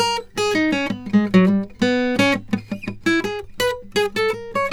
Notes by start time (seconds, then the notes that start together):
0.00 A#4
0.39 G#4
0.56 D#4
0.73 C#4
0.88 B3
1.15 G#3
1.35 F#3
1.47 G3
1.83 B3
2.20 C#4
3.07 E4
3.25 G#4
3.61 B4
3.97 G#4
4.17 A4
4.31 A#4
4.57 C#5